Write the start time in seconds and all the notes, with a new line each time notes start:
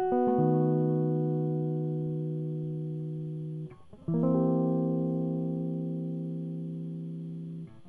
0.00 F#4
0.13 B3
0.32 A3
0.40 D#3
4.09 E3
4.15 A#3
4.24 C4
4.35 G4